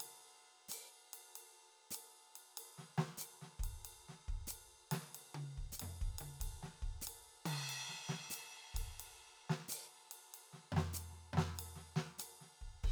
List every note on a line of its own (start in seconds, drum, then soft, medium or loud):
0.01 ride loud
0.69 hi-hat pedal medium
0.69 ride loud
1.14 ride medium
1.36 ride medium
1.91 hi-hat pedal loud
1.91 ride medium
2.36 ride medium
2.58 ride loud
2.79 snare soft
2.98 snare medium
3.18 hi-hat pedal loud
3.18 ride medium
3.42 snare soft
3.60 kick soft
3.64 ride medium
3.85 ride medium
4.09 snare soft
4.29 kick soft
4.48 hi-hat pedal loud
4.48 ride medium
4.92 snare medium
4.92 ride loud
5.15 ride medium
5.35 high tom medium
5.58 kick soft
5.73 hi-hat pedal medium
5.80 floor tom medium
5.80 ride loud
6.02 kick soft
6.19 high tom soft
6.19 ride medium
6.41 kick soft
6.41 ride medium
6.63 snare soft
6.83 kick soft
7.02 hi-hat pedal loud
7.08 ride loud
7.46 high tom medium
7.46 ride loud
7.70 ride medium
7.89 snare soft
8.09 snare medium
8.31 hi-hat pedal loud
8.31 ride medium
8.75 kick soft
8.75 ride medium
9.00 ride medium
9.50 snare medium
9.69 hi-hat pedal loud
9.69 ride loud
10.12 ride medium
10.35 ride medium
10.53 snare soft
10.72 floor tom medium
10.77 snare medium
10.94 hi-hat pedal loud
10.94 ride medium
11.12 snare soft
11.34 floor tom medium
11.38 snare medium
11.56 hi-hat pedal soft
11.56 ride loud
11.76 snare soft
11.97 snare medium
12.19 hi-hat pedal medium
12.19 ride loud
12.41 snare soft
12.62 kick soft
12.84 kick medium
12.84 crash medium